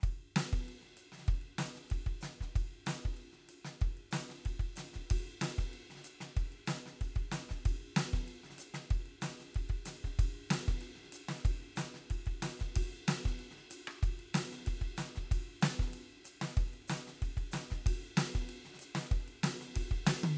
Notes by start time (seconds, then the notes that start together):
0.00 kick, snare, ride
0.36 snare, hi-hat pedal, ride
0.53 kick
0.68 ride
0.81 snare
0.85 snare
0.89 snare
0.92 snare
0.97 hi-hat pedal, ride
1.12 snare
1.17 snare
1.21 snare
1.28 kick, ride
1.41 ride
1.58 snare, hi-hat pedal, ride
1.75 snare
1.83 snare
1.90 kick, ride
2.06 kick, ride
2.21 snare, hi-hat pedal, ride
2.41 kick, snare
2.56 kick, ride
2.87 snare, hi-hat pedal, ride
3.05 kick
3.13 snare, ride
3.32 snare
3.38 snare
3.43 snare
3.47 snare, hi-hat pedal, ride
3.65 snare
3.81 kick, ride
3.97 ride
4.11 snare, hi-hat pedal, ride
4.29 snare
4.45 kick, ride
4.59 kick, ride
4.76 snare, hi-hat pedal, ride
4.93 kick, snare
5.10 kick, ride
5.41 snare, hi-hat pedal, ride
5.58 kick, snare
5.73 ride
5.90 snare
5.95 snare
5.98 snare
6.04 hi-hat pedal, ride
6.20 snare
6.37 kick, ride
6.52 ride
6.67 snare, hi-hat pedal, ride
6.86 snare
7.01 kick, ride
7.16 kick, ride
7.32 snare, hi-hat pedal, ride
7.49 kick, snare
7.65 kick, ride
7.96 snare, hi-hat pedal, ride
8.13 kick, snare
8.25 snare, ride
8.43 snare
8.50 snare
8.52 snare
8.54 snare
8.55 snare, hi-hat pedal, ride
8.74 snare
8.91 kick, ride
9.06 ride
9.22 snare, hi-hat pedal, ride
9.40 snare
9.55 kick, ride
9.69 kick, ride
9.85 snare, hi-hat pedal, ride
10.04 kick, snare
10.19 kick, ride
10.50 snare, hi-hat pedal, ride
10.68 kick, snare
10.80 snare, hi-hat pedal, ride
10.95 snare
11.04 snare
11.06 snare
11.13 hi-hat pedal, ride
11.29 snare
11.45 kick, ride
11.61 ride
11.76 snare, hi-hat pedal, ride
11.94 snare
12.10 kick, ride
12.26 kick, ride
12.42 snare, hi-hat pedal, ride
12.59 kick, snare
12.76 kick, ride
13.08 snare, hi-hat pedal, ride
13.25 kick, snare
13.39 ride
13.51 snare
13.58 snare
13.64 snare
13.67 snare
13.70 snare, hi-hat pedal, ride
13.87 cross-stick
14.03 kick, ride
14.19 ride
14.34 snare, hi-hat pedal, ride
14.52 snare
14.66 kick, ride
14.81 kick, ride
14.97 snare, hi-hat pedal, ride
15.15 kick, snare
15.31 kick, ride
15.62 snare, hi-hat pedal, ride
15.79 kick, snare
15.89 snare
15.93 ride
16.13 snare
16.15 snare
16.18 snare
16.25 hi-hat pedal, ride
16.41 snare
16.57 kick, ride
16.73 ride
16.88 snare, hi-hat pedal, ride
17.07 snare
17.22 kick, ride
17.37 kick, ride
17.52 snare, hi-hat pedal, ride
17.70 kick, snare
17.86 kick, ride
18.17 snare, hi-hat pedal, ride
18.34 kick, snare
18.49 ride
18.65 snare
18.74 snare
18.79 hi-hat pedal, ride
18.95 snare
19.11 kick, ride
19.28 ride
19.43 snare, hi-hat pedal, ride
19.60 snare
19.74 kick, snare, ride
19.91 kick
20.06 snare, hi-hat pedal, ride
20.23 high tom